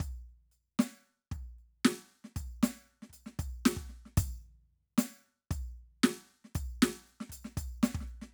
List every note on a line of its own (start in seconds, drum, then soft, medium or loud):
0.02 kick medium
0.02 percussion soft
0.29 percussion soft
0.52 percussion soft
0.79 snare loud
0.79 percussion medium
1.06 percussion soft
1.32 kick medium
1.32 percussion soft
1.59 percussion soft
1.85 snare loud
1.85 percussion medium
2.24 snare soft
2.36 kick medium
2.36 percussion medium
2.63 snare loud
2.63 percussion loud
3.02 snare soft
3.10 kick soft
3.10 percussion soft
3.26 snare soft
3.39 kick medium
3.39 percussion medium
3.66 snare loud
3.66 percussion medium
3.77 kick medium
3.89 snare soft
4.06 snare soft
4.17 kick loud
4.17 percussion loud
4.42 percussion soft
4.98 snare loud
4.98 percussion loud
5.51 kick medium
5.51 percussion medium
5.77 percussion soft
6.03 snare loud
6.03 percussion medium
6.44 snare soft
6.55 kick medium
6.55 percussion medium
6.82 snare loud
6.82 percussion medium
7.08 percussion soft
7.20 snare medium
7.29 kick soft
7.29 percussion medium
7.45 snare soft
7.57 kick medium
7.57 percussion medium
7.83 snare loud
7.83 percussion medium
7.95 kick medium
8.01 snare soft
8.08 percussion soft
8.22 snare soft